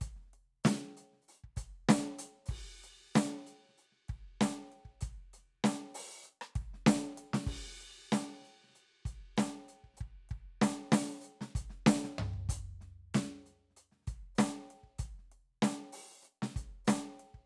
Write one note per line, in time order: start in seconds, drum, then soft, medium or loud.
0.01 closed hi-hat medium
0.01 kick soft
0.07 kick soft
0.16 snare soft
0.18 snare soft
0.21 snare soft
0.27 snare soft
0.33 closed hi-hat soft
0.64 open hi-hat medium
0.64 snare loud
0.64 hi-hat pedal soft
0.74 snare soft
0.97 closed hi-hat soft
1.13 snare soft
1.16 snare soft
1.22 hi-hat pedal soft
1.28 open hi-hat soft
1.44 kick soft
1.56 closed hi-hat medium
1.56 kick soft
1.56 hi-hat pedal medium
1.89 closed hi-hat medium
1.89 snare loud
2.19 open hi-hat loud
2.46 kick soft
2.46 hi-hat pedal medium
2.50 crash medium
2.54 kick soft
2.83 closed hi-hat soft
3.15 closed hi-hat medium
3.15 snare loud
3.47 closed hi-hat soft
3.68 snare soft
3.78 open hi-hat soft
3.92 snare soft
4.09 kick soft
4.09 closed hi-hat soft
4.41 open hi-hat medium
4.41 snare loud
4.41 hi-hat pedal soft
4.72 closed hi-hat soft
4.85 kick soft
5.01 closed hi-hat medium
5.01 kick soft
5.12 kick soft
5.33 closed hi-hat soft
5.33 snare soft
5.64 closed hi-hat medium
5.64 snare loud
5.95 open hi-hat loud
6.23 closed hi-hat soft
6.23 hi-hat pedal soft
6.41 cross-stick medium
6.56 kick soft
6.56 closed hi-hat soft
6.62 kick soft
6.74 snare soft
6.86 snare loud
7.00 snare soft
7.18 closed hi-hat medium
7.33 snare medium
7.47 kick soft
7.47 crash medium
7.53 kick soft
7.56 kick soft
7.66 snare soft
7.71 snare soft
7.75 snare soft
7.80 closed hi-hat soft
7.80 snare soft
8.12 open hi-hat medium
8.12 snare medium
8.41 closed hi-hat soft
8.41 snare soft
8.63 snare soft
8.69 snare soft
8.73 closed hi-hat soft
8.73 snare soft
9.05 closed hi-hat soft
9.05 kick soft
9.13 kick soft
9.37 open hi-hat medium
9.37 snare medium
9.37 hi-hat pedal medium
9.68 closed hi-hat soft
9.84 kick soft
9.93 snare soft
9.97 open hi-hat medium
9.97 kick soft
9.97 snare soft
9.97 hi-hat pedal soft
10.29 kick soft
10.29 closed hi-hat soft
10.62 closed hi-hat medium
10.62 snare loud
10.92 open hi-hat loud
10.92 snare loud
11.21 closed hi-hat soft
11.21 hi-hat pedal medium
11.41 snare soft
11.55 closed hi-hat medium
11.55 kick soft
11.61 kick soft
11.64 kick soft
11.70 snare soft
11.86 snare loud
12.04 snare soft
12.18 floor tom medium
12.33 kick soft
12.49 closed hi-hat loud
12.49 kick soft
12.81 snare soft
12.81 closed hi-hat soft
13.14 closed hi-hat medium
13.14 snare loud
13.46 closed hi-hat soft
13.70 snare soft
13.77 closed hi-hat soft
13.92 snare soft
13.96 snare soft
13.99 snare soft
14.02 snare soft
14.07 closed hi-hat soft
14.07 kick soft
14.35 closed hi-hat medium
14.35 snare loud
14.35 hi-hat pedal soft
14.70 closed hi-hat soft
14.83 kick soft
14.99 closed hi-hat medium
14.99 kick soft
15.05 kick soft
15.18 snare soft
15.23 snare soft
15.32 closed hi-hat soft
15.62 closed hi-hat soft
15.62 snare loud
15.93 open hi-hat medium
16.22 closed hi-hat soft
16.22 hi-hat pedal soft
16.42 snare medium
16.54 closed hi-hat medium
16.54 kick soft
16.54 snare soft
16.64 kick soft
16.85 closed hi-hat loud
16.85 snare loud
16.85 hi-hat pedal soft
17.20 closed hi-hat soft
17.34 kick soft